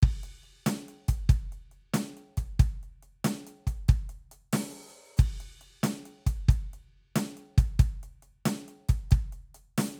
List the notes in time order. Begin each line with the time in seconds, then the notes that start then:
0.01 kick, crash
0.23 closed hi-hat
0.43 closed hi-hat
0.66 snare, closed hi-hat
0.88 closed hi-hat
1.08 kick, closed hi-hat
1.29 kick, closed hi-hat
1.52 closed hi-hat
1.71 closed hi-hat
1.94 snare, closed hi-hat
2.17 closed hi-hat
2.37 kick, closed hi-hat
2.59 kick, closed hi-hat
2.83 closed hi-hat
3.03 closed hi-hat
3.24 snare, closed hi-hat
3.47 closed hi-hat
3.67 kick, closed hi-hat
3.88 kick, closed hi-hat
4.09 closed hi-hat
4.31 closed hi-hat
4.53 snare, open hi-hat
5.17 kick, hi-hat pedal, crash
5.40 closed hi-hat
5.61 closed hi-hat
5.83 snare, closed hi-hat
6.06 closed hi-hat
6.26 kick, closed hi-hat
6.49 kick, closed hi-hat
6.73 closed hi-hat
7.16 snare, closed hi-hat
7.37 closed hi-hat
7.58 kick, closed hi-hat
7.79 kick, closed hi-hat
8.03 closed hi-hat
8.22 closed hi-hat
8.45 snare, closed hi-hat
8.68 closed hi-hat
8.89 kick, closed hi-hat
9.11 kick, closed hi-hat
9.32 closed hi-hat
9.54 closed hi-hat
9.78 snare, open hi-hat